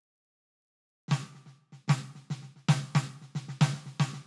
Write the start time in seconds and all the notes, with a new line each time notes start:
1.08 snare
1.11 snare
1.23 snare
1.35 snare
1.46 snare
1.61 snare
1.72 snare
1.88 snare
2.04 snare
2.15 snare
2.30 snare
2.42 snare
2.56 snare
2.69 snare
2.81 snare
2.95 snare
3.06 snare
3.22 snare
3.35 snare
3.49 snare
3.61 snare
3.73 snare
3.86 snare
4.00 snare
4.14 snare